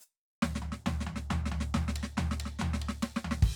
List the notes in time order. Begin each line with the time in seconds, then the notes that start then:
0.04 hi-hat pedal
0.42 snare, floor tom
0.55 snare
0.62 floor tom
0.72 snare
0.86 snare, floor tom
1.00 snare
1.07 floor tom
1.16 snare
1.30 snare, floor tom
1.46 snare
1.52 floor tom
1.60 snare
1.74 snare, floor tom
1.88 snare
1.96 floor tom
2.03 snare
2.17 snare, floor tom
2.31 snare
2.40 floor tom
2.45 snare
2.59 snare, floor tom
2.73 snare
2.77 snare
2.82 floor tom
2.88 snare
3.02 snare, floor tom
3.16 snare
3.24 floor tom
3.31 snare
3.42 kick, crash